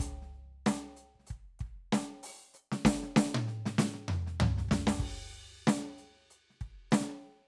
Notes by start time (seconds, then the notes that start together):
0.01 closed hi-hat, kick
0.07 kick
0.09 kick
0.23 snare
0.28 snare
0.32 snare
0.37 closed hi-hat
0.67 closed hi-hat, snare
0.97 closed hi-hat
1.16 kick
1.20 snare
1.24 closed hi-hat, snare
1.29 kick, snare
1.60 kick, closed hi-hat
1.67 kick
1.93 closed hi-hat, snare
2.24 open hi-hat
2.55 hi-hat pedal
2.73 snare
2.86 kick, snare
2.92 kick
3.03 snare
3.17 snare
3.35 high tom
3.48 snare
3.66 snare
3.79 snare, hi-hat pedal
3.95 snare
4.09 mid tom
4.27 snare
4.41 floor tom
4.58 snare
4.69 kick, snare
4.88 snare
5.00 kick, crash
5.07 kick
5.11 kick
5.33 open hi-hat
5.68 snare
5.80 snare
5.99 closed hi-hat
6.31 closed hi-hat
6.51 snare
6.54 snare
6.62 kick, closed hi-hat
6.92 closed hi-hat, snare, hi-hat pedal
7.01 cross-stick, snare
7.10 cross-stick